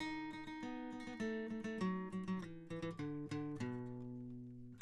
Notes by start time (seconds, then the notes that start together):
0.01 D3 D#4
0.32 D#4
0.48 D#4
0.64 B3
0.94 B3
1.01 D#4
1.08 B3
1.21 A3
1.52 A3
1.65 A3
1.82 F#3
2.14 F#3
2.29 F#3
2.41 E3
2.71 E3
2.83 E3
3.00 D3
3.08 D3
3.32 D3
3.61 B2